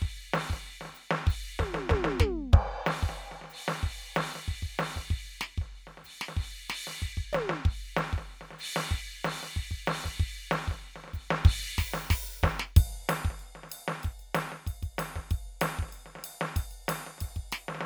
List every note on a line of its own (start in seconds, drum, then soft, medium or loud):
0.02 kick medium
0.02 crash medium
0.34 snare loud
0.34 hi-hat pedal medium
0.34 crash medium
0.50 kick medium
0.50 snare soft
0.64 crash soft
0.81 snare soft
0.85 kick soft
0.85 snare soft
0.93 hi-hat pedal medium
0.93 crash soft
1.11 snare loud
1.26 kick medium
1.26 hi-hat pedal medium
1.26 crash medium
1.59 kick medium
1.59 snare medium
1.59 mid tom medium
1.73 snare medium
1.73 mid tom medium
1.89 kick medium
1.89 snare loud
1.89 mid tom loud
2.04 snare loud
2.04 mid tom loud
2.20 kick medium
2.20 snare loud
2.20 hi-hat pedal soft
2.20 mid tom loud
2.53 kick loud
2.53 crash loud
2.86 snare loud
2.86 hi-hat pedal medium
2.86 crash medium
3.03 kick medium
3.09 snare soft
3.32 snare soft
3.42 snare soft
3.44 snare soft
3.50 hi-hat pedal medium
3.50 crash medium
3.68 snare loud
3.83 kick medium
3.83 crash medium
4.00 crash soft
4.15 snare loud
4.15 hi-hat pedal medium
4.15 crash medium
4.36 snare soft
4.48 kick medium
4.48 crash medium
4.63 kick soft
4.63 crash soft
4.78 snare loud
4.78 hi-hat pedal medium
4.78 crash medium
4.96 kick soft
4.96 snare soft
5.11 kick medium
5.11 crash medium
5.41 snare loud
5.41 hi-hat pedal medium
5.58 kick medium
5.58 snare soft
5.71 crash soft
5.87 snare soft
5.97 snare soft
6.03 kick soft
6.03 hi-hat pedal medium
6.03 crash medium
6.21 snare loud
6.29 snare medium
6.37 kick medium
6.37 crash medium
6.53 crash soft
6.69 snare loud
6.69 hi-hat pedal medium
6.69 crash loud
6.87 snare soft
7.01 kick medium
7.01 snare soft
7.01 crash soft
7.17 kick medium
7.33 snare loud
7.33 hi-hat pedal medium
7.33 high tom loud
7.49 snare loud
7.65 kick medium
7.65 crash medium
7.97 snare loud
7.97 hi-hat pedal medium
7.97 crash soft
8.13 kick medium
8.18 snare soft
8.26 crash soft
8.41 snare soft
8.51 snare soft
8.53 snare soft
8.59 hi-hat pedal medium
8.59 crash loud
8.76 snare loud
8.91 kick medium
8.91 crash medium
9.08 crash soft
9.24 snare loud
9.24 hi-hat pedal medium
9.24 crash loud
9.43 snare soft
9.56 kick medium
9.56 crash medium
9.71 kick medium
9.71 crash soft
9.87 snare loud
9.87 hi-hat pedal medium
9.87 crash loud
10.04 kick soft
10.04 snare soft
10.20 kick medium
10.20 crash medium
10.51 snare loud
10.51 hi-hat pedal medium
10.51 crash medium
10.68 kick medium
10.68 snare soft
10.83 crash soft
10.96 snare soft
11.04 snare soft
11.08 snare soft
11.14 kick soft
11.14 hi-hat pedal medium
11.14 crash soft
11.31 snare loud
11.44 kick loud
11.44 hi-hat pedal medium
11.44 crash loud
11.78 open hi-hat loud
11.78 kick medium
11.78 snare loud
11.94 snare medium
11.94 open hi-hat medium
12.10 open hi-hat loud
12.10 kick medium
12.10 snare loud
12.43 kick medium
12.43 snare loud
12.60 snare loud
12.77 kick loud
12.77 ride loud
13.09 snare loud
13.09 hi-hat pedal medium
13.09 ride loud
13.25 kick medium
13.30 snare soft
13.39 ride soft
13.55 snare soft
13.64 snare soft
13.69 hi-hat pedal medium
13.69 ride loud
13.88 snare loud
14.03 kick medium
14.03 ride medium
14.20 ride soft
14.35 snare loud
14.35 hi-hat pedal medium
14.35 ride medium
14.52 snare soft
14.67 kick medium
14.67 ride medium
14.83 kick soft
14.83 crash soft
14.83 ride soft
14.98 snare medium
14.98 hi-hat pedal medium
14.98 ride medium
15.16 kick soft
15.16 snare soft
15.31 kick medium
15.31 ride medium
15.61 snare loud
15.61 hi-hat pedal medium
15.61 ride loud
15.79 kick medium
15.79 snare soft
15.89 snare soft
15.89 ride soft
16.06 snare soft
16.15 kick soft
16.15 snare soft
16.19 snare soft
16.24 hi-hat pedal medium
16.24 ride loud
16.41 snare loud
16.56 kick medium
16.56 ride medium
16.71 ride soft
16.88 snare loud
16.88 hi-hat pedal medium
16.88 ride loud
17.07 snare soft
17.18 kick medium
17.18 snare soft
17.18 ride medium
17.24 snare soft
17.36 kick medium
17.36 ride soft
17.52 snare loud
17.52 hi-hat pedal medium
17.52 ride medium
17.68 snare medium
17.75 snare medium
17.81 snare medium